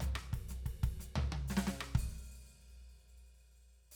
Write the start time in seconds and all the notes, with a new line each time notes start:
0.01 floor tom, hi-hat pedal
0.16 cross-stick
0.34 kick, ride
0.49 snare, hi-hat pedal
0.66 kick, ride
0.84 kick, ride
1.00 snare, hi-hat pedal
1.16 floor tom
1.33 high tom
1.48 snare, hi-hat pedal
1.57 snare
1.68 snare
1.81 cross-stick
1.95 open hi-hat, kick
3.92 hi-hat pedal